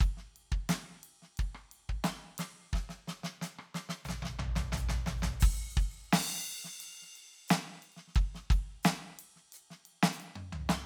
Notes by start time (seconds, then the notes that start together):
0.01 kick, ride
0.17 snare
0.36 ride
0.52 kick
0.69 snare, ride
1.04 ride
1.22 snare
1.38 kick, ride
1.55 cross-stick
1.72 ride
1.89 kick
2.04 snare, ride
2.38 snare, ride
2.73 kick, snare
2.89 snare
3.08 snare
3.24 snare
3.42 snare, hi-hat pedal
3.59 cross-stick
3.75 snare
3.89 snare
4.05 snare, floor tom, hi-hat pedal
4.23 snare, floor tom
4.39 cross-stick, floor tom
4.56 snare, floor tom
4.72 snare, floor tom
4.77 hi-hat pedal
4.89 snare, floor tom
5.07 snare, floor tom
5.18 hi-hat pedal
5.23 snare, floor tom
5.40 open hi-hat, kick, ride
5.53 ride
5.77 kick
6.13 snare, crash
6.44 ride
6.65 snare
6.80 hi-hat pedal, ride
7.02 snare
7.16 ride
7.48 snare, hi-hat pedal, ride
7.83 ride
7.92 ride
7.97 snare
8.08 snare
8.15 kick, ride
8.35 snare
8.51 kick, ride
8.83 snare, hi-hat pedal, ride
9.19 ride
9.36 snare
9.53 hi-hat pedal, ride
9.71 snare
9.86 ride
10.03 snare
10.13 hi-hat pedal
10.20 ride
10.36 high tom
10.53 mid tom
10.69 snare